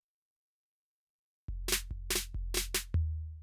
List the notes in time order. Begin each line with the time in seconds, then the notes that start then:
1.48 kick
1.68 snare
1.72 snare
1.91 kick
2.10 snare
2.15 snare
2.35 kick
2.54 snare
2.57 snare
2.74 snare
2.94 floor tom